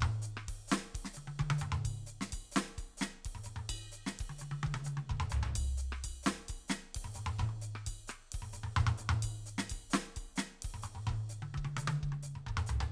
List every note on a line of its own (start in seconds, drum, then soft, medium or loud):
0.01 kick soft
0.01 mid tom loud
0.07 kick soft
0.11 mid tom soft
0.22 hi-hat pedal medium
0.37 cross-stick medium
0.49 kick soft
0.49 ride medium
0.54 kick soft
0.68 snare loud
0.68 hi-hat pedal medium
0.77 snare soft
0.95 kick soft
0.95 ride medium
1.05 snare medium
1.14 hi-hat pedal medium
1.14 high tom medium
1.28 high tom medium
1.40 kick soft
1.40 high tom loud
1.50 high tom loud
1.59 hi-hat pedal medium
1.59 mid tom medium
1.72 mid tom loud
1.85 kick soft
1.85 ride bell medium
2.07 hi-hat pedal medium
2.21 snare medium
2.33 kick soft
2.33 ride bell medium
2.52 hi-hat pedal medium
2.56 snare loud
2.78 kick soft
2.78 ride bell soft
2.98 snare medium
2.98 hi-hat pedal medium
3.25 kick soft
3.25 ride medium
3.32 kick soft
3.32 mid tom medium
3.44 hi-hat pedal medium
3.44 mid tom medium
3.70 kick soft
3.70 ride bell loud
3.92 hi-hat pedal medium
3.92 ride soft
4.07 snare medium
4.19 kick soft
4.19 ride medium
4.30 high tom medium
4.39 hi-hat pedal medium
4.39 high tom medium
4.52 high tom medium
4.63 kick soft
4.63 high tom loud
4.75 high tom loud
4.85 hi-hat pedal medium
4.85 high tom medium
4.97 high tom medium
5.10 kick soft
5.10 mid tom medium
5.17 kick soft
5.17 mid tom loud
5.30 floor tom loud
5.30 hi-hat pedal medium
5.43 floor tom loud
5.56 kick soft
5.56 ride bell medium
5.78 hi-hat pedal medium
5.93 cross-stick medium
6.04 kick soft
6.04 ride bell medium
6.10 kick soft
6.23 snare medium
6.23 hi-hat pedal medium
6.49 kick soft
6.49 ride bell medium
6.68 snare medium
6.68 hi-hat pedal medium
6.95 kick soft
6.95 ride loud
7.02 kick soft
7.02 mid tom medium
7.14 hi-hat pedal medium
7.14 mid tom medium
7.27 mid tom medium
7.39 kick soft
7.39 mid tom loud
7.49 mid tom soft
7.62 hi-hat pedal medium
7.76 cross-stick medium
7.87 kick soft
7.87 ride bell medium
7.93 kick soft
8.08 cross-stick medium
8.08 hi-hat pedal medium
8.32 kick soft
8.32 ride medium
8.42 mid tom medium
8.53 hi-hat pedal medium
8.53 mid tom medium
8.64 mid tom medium
8.77 kick soft
8.77 mid tom loud
8.87 mid tom loud
8.98 hi-hat pedal medium
8.98 mid tom soft
9.10 mid tom loud
9.23 kick soft
9.23 ride bell medium
9.46 hi-hat pedal medium
9.59 snare medium
9.70 kick soft
9.70 ride bell medium
9.91 snare loud
9.91 hi-hat pedal medium
10.17 kick soft
10.17 ride bell medium
10.23 kick soft
10.36 snare medium
10.36 hi-hat pedal medium
10.63 kick soft
10.63 ride medium
10.70 kick soft
10.70 mid tom medium
10.83 hi-hat pedal medium
10.83 mid tom medium
10.95 mid tom medium
11.07 kick soft
11.07 mid tom loud
11.15 kick soft
11.30 hi-hat pedal medium
11.30 high tom soft
11.43 high tom medium
11.55 kick soft
11.55 high tom medium
11.64 kick soft
11.64 high tom medium
11.77 hi-hat pedal medium
11.77 high tom loud
11.88 high tom loud
12.03 kick soft
12.09 kick soft
12.09 high tom medium
12.23 hi-hat pedal medium
12.23 mid tom soft
12.36 mid tom medium
12.47 kick soft
12.47 mid tom medium
12.57 mid tom loud
12.67 floor tom loud
12.67 hi-hat pedal medium
12.81 floor tom loud